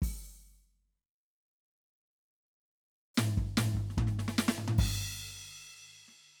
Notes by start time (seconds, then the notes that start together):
0.02 open hi-hat, kick
3.15 snare, hi-hat pedal
3.19 floor tom
3.37 kick, floor tom
3.57 snare, floor tom
3.75 kick, floor tom
3.90 snare
3.98 kick, floor tom
4.07 snare
4.19 snare
4.28 snare
4.38 snare
4.48 snare
4.58 floor tom
4.78 kick, crash
6.08 snare